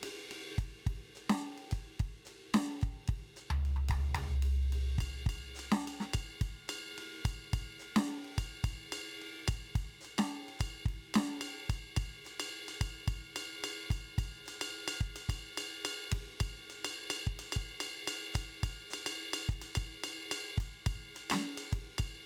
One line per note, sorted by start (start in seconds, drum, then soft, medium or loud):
0.01 snare soft
0.01 hi-hat pedal soft
0.01 ride loud
0.31 ride medium
0.58 kick soft
0.58 hi-hat pedal medium
0.58 ride medium
0.86 kick soft
0.86 ride medium
0.95 kick soft
1.15 hi-hat pedal medium
1.15 ride medium
1.29 snare loud
1.29 ride loud
1.58 ride medium
1.71 kick soft
1.71 hi-hat pedal medium
1.71 ride medium
1.99 kick soft
1.99 ride medium
2.25 hi-hat pedal medium
2.25 ride medium
2.54 snare loud
2.54 ride loud
2.81 kick soft
2.81 hi-hat pedal soft
2.81 ride medium
2.88 kick soft
2.91 kick soft
3.08 kick soft
3.08 ride medium
3.36 hi-hat pedal medium
3.36 ride bell soft
3.50 floor tom loud
3.65 ride medium
3.76 floor tom medium
3.89 kick soft
3.89 hi-hat pedal medium
3.89 ride loud
3.89 floor tom loud
4.14 ride loud
4.14 floor tom loud
4.23 floor tom soft
4.42 hi-hat pedal medium
4.42 ride loud
4.72 ride loud
4.98 kick soft
4.98 hi-hat pedal medium
4.98 ride bell loud
5.03 kick soft
5.26 kick soft
5.26 ride bell loud
5.35 kick soft
5.55 hi-hat pedal medium
5.59 ride bell medium
5.72 snare loud
5.87 ride bell medium
6.00 snare medium
6.13 kick soft
6.13 hi-hat pedal medium
6.13 ride bell loud
6.41 kick soft
6.41 snare soft
6.41 ride bell medium
6.49 kick soft
6.68 hi-hat pedal medium
6.68 ride bell loud
6.98 ride medium
7.25 kick soft
7.25 hi-hat pedal medium
7.25 ride bell loud
7.53 kick soft
7.53 ride bell loud
7.61 kick soft
7.79 hi-hat pedal medium
7.79 ride medium
7.96 snare loud
7.96 closed hi-hat soft
7.96 ride loud
8.24 ride medium
8.38 kick soft
8.38 hi-hat pedal medium
8.38 ride bell loud
8.64 kick soft
8.64 ride bell loud
8.72 kick soft
8.92 hi-hat pedal medium
8.92 ride bell loud
9.22 ride medium
9.48 kick soft
9.48 hi-hat pedal medium
9.48 ride bell loud
9.54 kick soft
9.75 kick soft
9.75 ride bell loud
9.81 kick soft
9.84 kick soft
10.01 hi-hat pedal medium
10.05 ride bell medium
10.18 snare loud
10.18 ride bell loud
10.48 ride medium
10.59 kick soft
10.59 hi-hat pedal medium
10.59 ride bell loud
10.85 kick soft
10.85 ride medium
10.94 kick soft
11.14 snare loud
11.14 hi-hat pedal medium
11.14 ride bell loud
11.41 ride bell loud
11.69 kick soft
11.69 hi-hat pedal medium
11.69 ride bell loud
11.96 kick soft
11.96 ride bell loud
12.03 kick soft
12.06 kick soft
12.24 hi-hat pedal medium
12.24 ride bell medium
12.40 ride bell loud
12.68 ride bell medium
12.81 kick soft
12.81 hi-hat pedal medium
12.81 ride bell loud
13.07 kick soft
13.07 ride bell loud
13.16 kick soft
13.36 hi-hat pedal medium
13.36 ride bell loud
13.64 ride bell loud
13.90 kick soft
13.90 hi-hat pedal medium
13.90 ride bell loud
14.18 kick soft
14.18 ride bell loud
14.24 kick soft
14.45 hi-hat pedal medium
14.45 ride bell medium
14.61 ride bell loud
14.88 ride bell loud
15.00 kick soft
15.00 hi-hat pedal medium
15.16 ride bell medium
15.29 kick soft
15.29 ride bell loud
15.57 hi-hat pedal medium
15.57 ride bell loud
15.85 ride bell loud
16.12 kick soft
16.12 hi-hat pedal soft
16.12 ride loud
16.40 kick soft
16.40 ride bell loud
16.70 hi-hat pedal soft
16.70 ride bell medium
16.84 ride bell loud
17.10 ride bell loud
17.26 kick soft
17.26 hi-hat pedal soft
17.39 ride bell medium
17.52 kick soft
17.52 ride bell loud
17.80 hi-hat pedal medium
17.80 ride bell loud
18.07 ride bell loud
18.34 kick soft
18.34 hi-hat pedal medium
18.34 ride bell loud
18.63 kick soft
18.63 ride bell loud
18.90 hi-hat pedal medium
18.90 ride bell loud
19.06 ride bell loud
19.33 ride bell loud
19.49 kick soft
19.49 hi-hat pedal medium
19.62 ride bell medium
19.75 kick soft
19.75 ride bell loud
20.04 hi-hat pedal medium
20.04 ride bell loud
20.31 ride bell loud
20.58 kick soft
20.58 hi-hat pedal medium
20.58 ride bell medium
20.86 kick soft
20.86 ride bell loud
20.96 kick soft
21.14 hi-hat pedal soft
21.14 ride bell medium
21.30 snare loud
21.30 ride bell loud
21.57 ride bell medium
21.71 kick soft
21.71 hi-hat pedal medium
21.71 ride loud
21.98 kick soft
21.98 ride bell loud